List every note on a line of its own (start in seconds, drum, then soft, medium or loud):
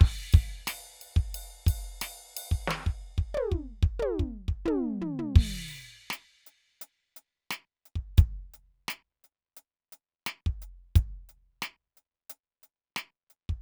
0.01 kick loud
0.01 crash medium
0.33 kick loud
0.33 ride medium
0.67 snare loud
0.67 ride loud
1.01 ride medium
1.16 kick medium
1.16 snare soft
1.35 ride loud
1.67 kick loud
1.67 ride loud
2.02 snare loud
2.02 ride loud
2.37 ride loud
2.52 kick medium
2.68 snare loud
2.71 snare loud
2.87 kick medium
3.18 kick medium
3.18 snare soft
3.34 high tom loud
3.37 high tom loud
3.52 kick medium
3.83 kick loud
3.83 snare soft
3.99 mid tom loud
3.99 high tom loud
4.20 kick medium
4.48 kick medium
4.65 floor tom loud
4.65 mid tom loud
5.01 floor tom medium
5.18 floor tom medium
5.36 kick loud
5.36 crash loud
5.68 open hi-hat soft
6.10 closed hi-hat loud
6.10 snare loud
6.47 closed hi-hat medium
6.81 closed hi-hat loud
7.16 closed hi-hat medium
7.51 closed hi-hat loud
7.51 snare loud
7.86 closed hi-hat medium
7.96 kick medium
8.18 closed hi-hat loud
8.18 kick loud
8.54 closed hi-hat medium
8.88 closed hi-hat loud
8.88 snare loud
9.24 closed hi-hat soft
9.57 closed hi-hat medium
9.92 closed hi-hat medium
10.27 closed hi-hat loud
10.27 snare loud
10.46 kick medium
10.62 closed hi-hat medium
10.96 closed hi-hat loud
10.96 kick loud
11.29 closed hi-hat medium
11.62 closed hi-hat loud
11.62 snare loud
11.97 closed hi-hat soft
12.30 closed hi-hat loud
12.63 closed hi-hat medium
12.96 closed hi-hat loud
12.96 snare loud
13.30 closed hi-hat soft
13.49 kick medium